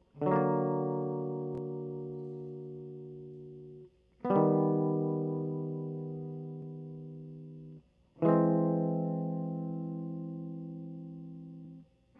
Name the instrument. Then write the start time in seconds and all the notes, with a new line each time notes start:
electric guitar
0.22 D3
0.27 F#3
0.32 A#3
4.25 B3
4.31 G3
4.36 D#3
8.23 E3 G#3
8.29 C4